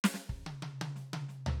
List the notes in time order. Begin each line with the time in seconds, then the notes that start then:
0.04 snare
0.14 snare
0.29 kick
0.46 high tom
0.62 high tom
0.81 high tom
0.95 snare
1.13 high tom
1.28 snare
1.46 floor tom